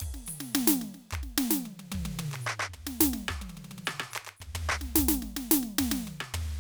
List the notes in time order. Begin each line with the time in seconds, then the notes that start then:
0.01 kick, ride
0.09 kick
0.15 snare
0.27 hi-hat pedal, mid tom
0.41 snare
0.56 snare
0.68 snare
0.82 snare
0.95 snare
1.11 kick, percussion
1.20 kick, snare
1.39 snare
1.51 snare
1.66 high tom
1.80 high tom
1.93 kick, high tom
2.01 kick
2.06 closed hi-hat, high tom
2.16 kick, mid tom
2.32 percussion
2.42 hi-hat pedal
2.47 percussion
2.60 percussion
2.70 kick
2.74 floor tom
2.87 snare
2.99 kick, snare, hi-hat pedal
3.14 snare
3.29 kick, cross-stick, hi-hat pedal
3.42 high tom
3.50 high tom
3.58 high tom
3.65 high tom
3.72 high tom
3.79 high tom
3.86 cross-stick, hi-hat pedal
4.01 cross-stick
4.11 percussion, hi-hat pedal
4.26 percussion
4.37 kick, hi-hat pedal
4.42 floor tom
4.56 floor tom
4.70 kick, percussion, hi-hat pedal
4.82 snare
4.96 kick, snare
5.06 kick, snare
5.23 snare
5.37 snare
5.52 snare
5.64 snare
5.79 kick, snare
5.92 snare
6.03 kick
6.08 mid tom
6.21 cross-stick
6.35 floor tom